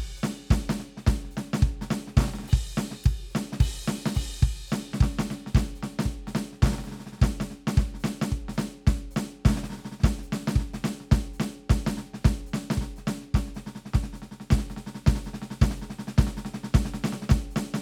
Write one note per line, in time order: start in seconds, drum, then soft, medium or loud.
0.18 hi-hat pedal medium
0.24 snare loud
0.52 kick loud
0.52 snare loud
0.70 snare loud
0.70 hi-hat pedal medium
0.80 snare medium
0.98 snare medium
1.08 kick loud
1.08 snare loud
1.25 snare soft
1.32 hi-hat pedal medium
1.38 snare loud
1.54 snare loud
1.63 kick loud
1.67 snare soft
1.82 snare medium
1.82 hi-hat pedal medium
1.92 snare loud
2.08 snare soft
2.18 kick loud
2.18 snare loud
2.25 snare medium
2.35 snare medium
2.35 hi-hat pedal medium
2.40 snare medium
2.44 snare medium
2.49 crash loud
2.54 kick loud
2.78 snare loud
2.78 hi-hat pedal medium
2.92 snare medium
3.04 kick loud
3.04 snare soft
3.04 crash medium
3.31 hi-hat pedal soft
3.36 snare loud
3.53 snare medium
3.61 kick loud
3.61 crash loud
3.83 hi-hat pedal soft
3.89 snare loud
4.07 snare loud
4.16 kick medium
4.16 crash loud
4.44 kick loud
4.44 ride soft
4.69 hi-hat pedal medium
4.73 snare loud
4.94 snare medium
5.02 kick loud
5.02 snare loud
5.20 snare loud
5.20 hi-hat pedal medium
5.31 snare medium
5.47 snare medium
5.56 kick loud
5.56 snare loud
5.76 hi-hat pedal medium
5.84 snare medium
6.00 snare loud
6.07 kick medium
6.28 snare medium
6.28 hi-hat pedal medium
6.36 snare loud
6.53 snare soft
6.63 kick loud
6.63 snare loud
6.67 snare loud
6.71 snare medium
6.73 snare medium
6.79 snare medium
6.85 snare soft
6.85 hi-hat pedal medium
6.88 snare medium
6.92 snare medium
6.96 snare soft
7.00 snare medium
7.07 snare medium
7.13 snare soft
7.19 kick loud
7.19 snare soft
7.24 snare loud
7.41 snare loud
7.41 hi-hat pedal medium
7.51 snare soft
7.68 snare loud
7.78 kick loud
7.78 snare medium
7.95 snare soft
8.01 hi-hat pedal medium
8.05 snare loud
8.23 snare loud
8.33 kick medium
8.49 snare medium
8.54 hi-hat pedal medium
8.59 snare loud
8.88 kick loud
8.88 snare loud
9.12 hi-hat pedal medium
9.17 snare loud
9.46 kick loud
9.46 snare loud
9.50 snare loud
9.53 snare medium
9.57 snare medium
9.64 snare medium
9.64 hi-hat pedal medium
9.70 snare medium
9.73 snare medium
9.78 snare soft
9.82 snare soft
9.86 snare medium
9.93 snare medium
10.01 snare soft
10.05 kick loud
10.05 snare loud
10.19 snare soft
10.24 hi-hat pedal medium
10.33 snare loud
10.48 snare loud
10.57 kick loud
10.57 snare medium
10.75 snare medium
10.75 hi-hat pedal medium
10.85 snare loud
11.01 snare soft
11.12 kick loud
11.12 snare loud
11.29 snare soft
11.35 hi-hat pedal medium
11.41 snare loud
11.71 kick loud
11.71 snare loud
11.88 snare loud
11.88 hi-hat pedal medium
11.98 snare medium
12.15 snare medium
12.26 kick loud
12.26 snare loud
12.47 hi-hat pedal medium
12.55 snare loud
12.71 snare loud
12.78 kick medium
12.78 snare medium
12.97 snare soft
12.97 hi-hat pedal medium
13.08 snare loud
13.22 snare soft
13.35 kick loud
13.35 snare loud
13.48 snare soft
13.56 snare medium
13.56 hi-hat pedal medium
13.67 snare medium
13.76 snare medium
13.86 snare medium
13.95 kick loud
13.95 snare medium
14.04 snare medium
14.14 snare soft
14.14 hi-hat pedal medium
14.23 snare medium
14.32 snare soft
14.41 snare soft
14.51 kick loud
14.51 snare loud
14.59 snare medium
14.71 snare medium
14.71 hi-hat pedal medium
14.77 snare medium
14.96 snare medium
15.07 kick loud
15.07 snare loud
15.16 snare medium
15.25 snare medium
15.25 hi-hat pedal medium
15.35 snare medium
15.43 snare medium
15.51 snare medium
15.63 kick loud
15.63 snare loud
15.71 snare medium
15.78 hi-hat pedal medium
15.83 snare medium
15.91 snare medium
16.00 snare medium
16.08 snare medium
16.19 kick loud
16.19 snare loud
16.28 snare medium
16.38 hi-hat pedal medium
16.46 snare medium
16.55 snare medium
16.65 snare medium
16.75 kick loud
16.75 snare loud
16.86 snare medium
16.95 snare medium
16.95 hi-hat pedal medium
17.05 snare loud
17.14 snare medium
17.23 snare medium
17.30 kick loud
17.30 snare loud
17.52 hi-hat pedal medium
17.57 snare loud
17.75 snare loud